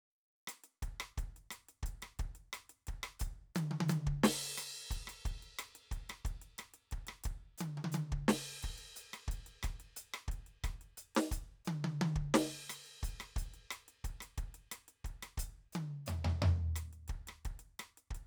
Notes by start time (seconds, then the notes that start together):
0.47 cross-stick, closed hi-hat
0.64 closed hi-hat
0.82 kick, closed hi-hat
1.00 cross-stick, closed hi-hat
1.17 kick, closed hi-hat
1.36 closed hi-hat
1.51 cross-stick, closed hi-hat
1.69 closed hi-hat
1.83 kick, closed hi-hat
2.02 cross-stick, closed hi-hat
2.19 kick, closed hi-hat
2.35 closed hi-hat
2.53 cross-stick, closed hi-hat
2.69 closed hi-hat
2.87 kick, closed hi-hat
3.03 cross-stick, closed hi-hat
3.19 closed hi-hat, kick
3.55 hi-hat pedal, high tom
3.71 high tom
3.80 high tom
3.88 hi-hat pedal, high tom
4.07 kick
4.23 snare, crash
4.57 closed hi-hat, cross-stick
4.76 closed hi-hat
4.90 kick, closed hi-hat
5.07 cross-stick, closed hi-hat
5.25 kick, closed hi-hat
5.42 closed hi-hat
5.59 cross-stick, closed hi-hat
5.75 closed hi-hat
5.91 kick, closed hi-hat
6.09 cross-stick, closed hi-hat
6.25 kick, closed hi-hat
6.42 closed hi-hat
6.58 cross-stick, closed hi-hat
6.74 closed hi-hat
6.91 kick, closed hi-hat
7.07 cross-stick, closed hi-hat
7.24 kick, closed hi-hat
7.58 hi-hat pedal, high tom
7.77 high tom
7.84 high tom
7.92 hi-hat pedal, high tom
8.12 kick
8.28 snare, crash
8.63 kick, closed hi-hat
8.78 closed hi-hat
8.96 closed hi-hat
9.13 cross-stick, closed hi-hat
9.28 kick, closed hi-hat
9.46 closed hi-hat
9.63 kick, cross-stick, closed hi-hat
9.80 closed hi-hat
9.96 closed hi-hat
10.14 cross-stick, closed hi-hat
10.28 kick, closed hi-hat
10.46 closed hi-hat
10.64 kick, cross-stick, closed hi-hat
10.81 closed hi-hat
10.97 closed hi-hat
11.15 snare, closed hi-hat
11.31 closed hi-hat, kick
11.65 hi-hat pedal, high tom
11.84 high tom
12.01 high tom
12.16 kick
12.34 snare, crash
12.69 closed hi-hat, cross-stick
12.86 closed hi-hat
13.03 closed hi-hat, kick
13.20 cross-stick, closed hi-hat
13.36 closed hi-hat, kick
13.54 closed hi-hat
13.71 cross-stick, closed hi-hat
13.88 closed hi-hat
14.04 kick, closed hi-hat
14.20 cross-stick, closed hi-hat
14.38 kick, closed hi-hat
14.54 closed hi-hat
14.71 cross-stick, closed hi-hat
14.88 closed hi-hat
15.04 kick, closed hi-hat
15.22 cross-stick, closed hi-hat
15.37 closed hi-hat, kick
15.72 hi-hat pedal, high tom
16.06 floor tom, hi-hat pedal
16.24 floor tom
16.42 floor tom
16.76 cross-stick, closed hi-hat
16.93 closed hi-hat
17.08 kick, closed hi-hat
17.27 cross-stick, closed hi-hat
17.45 kick, closed hi-hat
17.59 closed hi-hat
17.79 cross-stick, closed hi-hat
17.97 closed hi-hat
18.10 kick
18.15 closed hi-hat